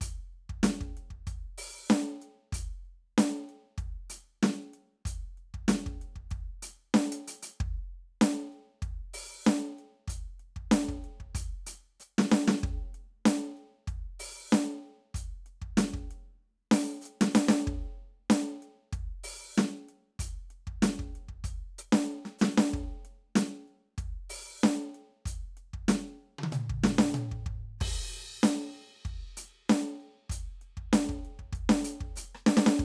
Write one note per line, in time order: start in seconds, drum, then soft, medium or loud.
0.01 closed hi-hat loud
0.01 kick medium
0.33 closed hi-hat soft
0.49 kick medium
0.63 closed hi-hat loud
0.63 snare loud
0.81 kick medium
0.97 closed hi-hat soft
1.11 kick soft
1.27 closed hi-hat medium
1.27 kick medium
1.58 open hi-hat loud
1.90 snare loud
1.90 closed hi-hat medium
1.90 hi-hat pedal medium
2.22 closed hi-hat medium
2.53 closed hi-hat loud
2.53 kick medium
2.85 closed hi-hat soft
3.18 closed hi-hat loud
3.18 snare loud
3.49 closed hi-hat soft
3.78 kick medium
3.78 closed hi-hat soft
4.10 open hi-hat loud
4.43 snare loud
4.43 closed hi-hat medium
4.43 hi-hat pedal medium
4.74 closed hi-hat soft
5.05 closed hi-hat loud
5.05 kick medium
5.38 closed hi-hat soft
5.54 kick medium
5.68 closed hi-hat loud
5.68 snare loud
5.86 kick medium
6.02 closed hi-hat soft
6.16 kick soft
6.31 kick medium
6.31 closed hi-hat soft
6.63 closed hi-hat loud
6.94 snare loud
7.12 closed hi-hat loud
7.28 closed hi-hat loud
7.43 closed hi-hat loud
7.60 kick medium
8.21 closed hi-hat loud
8.21 snare loud
8.52 closed hi-hat soft
8.82 kick medium
8.82 closed hi-hat soft
9.14 open hi-hat loud
9.46 snare loud
9.46 closed hi-hat soft
9.46 hi-hat pedal medium
9.79 closed hi-hat soft
10.08 closed hi-hat loud
10.08 kick medium
10.40 closed hi-hat soft
10.56 kick medium
10.71 closed hi-hat loud
10.71 snare loud
10.89 kick medium
11.04 closed hi-hat soft
11.20 kick soft
11.35 closed hi-hat loud
11.35 kick medium
11.67 closed hi-hat loud
12.00 hi-hat pedal medium
12.18 snare loud
12.32 snare loud
12.48 snare loud
12.63 kick medium
12.94 closed hi-hat soft
13.26 closed hi-hat loud
13.26 snare loud
13.57 closed hi-hat soft
13.88 kick medium
13.88 closed hi-hat soft
14.20 open hi-hat loud
14.52 closed hi-hat loud
14.52 snare loud
14.52 hi-hat pedal medium
15.14 closed hi-hat loud
15.14 kick medium
15.46 closed hi-hat soft
15.62 kick medium
15.77 closed hi-hat loud
15.77 snare loud
15.94 kick medium
16.11 closed hi-hat soft
16.71 open hi-hat loud
16.71 snare loud
17.01 hi-hat pedal medium
17.06 closed hi-hat medium
17.21 snare loud
17.21 closed hi-hat loud
17.35 closed hi-hat loud
17.35 snare loud
17.49 closed hi-hat medium
17.49 snare loud
17.67 kick medium
18.30 closed hi-hat loud
18.30 snare loud
18.62 closed hi-hat soft
18.93 kick medium
18.93 closed hi-hat medium
19.24 open hi-hat loud
19.58 closed hi-hat medium
19.58 snare loud
19.58 hi-hat pedal medium
19.89 closed hi-hat soft
20.19 closed hi-hat loud
20.19 kick medium
20.51 closed hi-hat soft
20.67 kick medium
20.83 closed hi-hat loud
20.83 snare loud
20.99 kick medium
21.15 closed hi-hat soft
21.29 kick soft
21.44 closed hi-hat medium
21.44 kick medium
21.79 open hi-hat loud
21.79 hi-hat pedal medium
21.93 snare loud
22.09 snare soft
22.25 snare soft
22.39 snare loud
22.39 hi-hat pedal medium
22.58 snare loud
22.74 kick medium
23.05 closed hi-hat soft
23.36 closed hi-hat loud
23.36 snare loud
23.68 closed hi-hat soft
23.98 kick medium
23.98 closed hi-hat medium
24.30 open hi-hat loud
24.63 closed hi-hat medium
24.63 snare loud
24.63 hi-hat pedal medium
24.95 closed hi-hat soft
25.26 closed hi-hat loud
25.26 kick medium
25.57 closed hi-hat soft
25.74 kick medium
25.88 open hi-hat loud
25.88 snare loud
25.88 hi-hat pedal medium
26.39 high tom medium
26.44 high tom loud
26.52 hi-hat pedal medium
26.52 mid tom loud
26.70 kick medium
26.84 snare loud
26.99 snare loud
27.13 hi-hat pedal medium
27.13 mid tom loud
27.32 kick medium
27.46 kick medium
27.79 kick soft
27.79 crash loud
27.81 kick loud
28.43 closed hi-hat loud
28.43 snare loud
28.75 closed hi-hat soft
29.05 kick medium
29.05 closed hi-hat soft
29.37 open hi-hat loud
29.69 snare loud
29.69 closed hi-hat medium
29.69 hi-hat pedal medium
30.01 closed hi-hat soft
30.30 closed hi-hat loud
30.30 kick medium
30.61 closed hi-hat soft
30.77 kick medium
30.93 closed hi-hat loud
30.93 snare loud
31.09 kick medium
31.25 closed hi-hat soft
31.39 kick soft
31.53 kick medium
31.53 closed hi-hat medium
31.69 snare loud
31.85 closed hi-hat loud
32.01 kick medium
32.16 closed hi-hat loud
32.16 hi-hat pedal medium
32.35 cross-stick medium
32.47 snare loud
32.57 snare loud
32.66 snare loud
32.79 kick medium